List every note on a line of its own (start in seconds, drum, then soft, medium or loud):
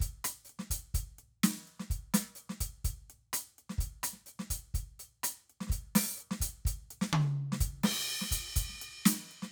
0.01 closed hi-hat medium
0.01 kick soft
0.25 closed hi-hat loud
0.25 cross-stick medium
0.45 hi-hat pedal soft
0.50 closed hi-hat soft
0.60 snare soft
0.71 closed hi-hat loud
0.71 kick soft
0.95 closed hi-hat medium
0.95 kick soft
1.19 closed hi-hat soft
1.44 closed hi-hat loud
1.44 snare medium
1.63 hi-hat pedal soft
1.68 closed hi-hat soft
1.80 snare soft
1.91 closed hi-hat medium
1.91 kick soft
2.14 closed hi-hat loud
2.14 snare medium
2.36 hi-hat pedal medium
2.40 closed hi-hat soft
2.50 snare soft
2.61 closed hi-hat medium
2.61 kick soft
2.85 closed hi-hat medium
2.85 kick soft
2.91 kick soft
3.10 closed hi-hat soft
3.34 closed hi-hat loud
3.34 cross-stick medium
3.59 closed hi-hat soft
3.70 snare soft
3.78 closed hi-hat medium
3.78 kick soft
3.78 snare soft
4.04 closed hi-hat loud
4.04 cross-stick medium
4.13 snare soft
4.27 closed hi-hat soft
4.27 hi-hat pedal medium
4.40 snare soft
4.51 closed hi-hat medium
4.51 kick soft
4.75 closed hi-hat medium
4.75 kick soft
5.00 closed hi-hat soft
5.24 closed hi-hat loud
5.24 cross-stick medium
5.50 closed hi-hat soft
5.61 snare soft
5.68 kick soft
5.68 snare soft
5.72 closed hi-hat medium
5.96 open hi-hat loud
5.96 snare medium
6.18 closed hi-hat soft
6.18 hi-hat pedal medium
6.32 snare medium
6.41 closed hi-hat loud
6.41 kick soft
6.66 closed hi-hat medium
6.66 kick soft
6.72 kick soft
6.91 closed hi-hat medium
7.02 snare medium
7.13 mid tom loud
7.21 snare soft
7.25 snare soft
7.53 snare medium
7.61 closed hi-hat medium
7.61 kick soft
7.84 snare medium
7.84 crash loud
8.04 hi-hat pedal soft
8.11 closed hi-hat soft
8.22 snare soft
8.32 closed hi-hat loud
8.32 kick soft
8.57 closed hi-hat loud
8.57 kick soft
8.70 snare soft
8.74 snare soft
8.82 closed hi-hat medium
9.06 closed hi-hat loud
9.06 snare loud
9.32 closed hi-hat soft
9.43 snare soft